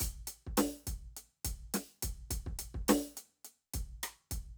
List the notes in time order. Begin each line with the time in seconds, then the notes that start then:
0.00 closed hi-hat, kick
0.27 closed hi-hat
0.47 kick
0.57 snare, closed hi-hat
0.87 kick, closed hi-hat
1.17 closed hi-hat
1.45 kick, closed hi-hat
1.74 snare, closed hi-hat
2.03 kick, closed hi-hat
2.30 kick, closed hi-hat
2.46 kick
2.59 closed hi-hat
2.74 kick
2.81 kick
2.88 snare, closed hi-hat
3.17 closed hi-hat
3.45 closed hi-hat
3.74 kick, closed hi-hat
4.03 cross-stick, closed hi-hat
4.31 kick, closed hi-hat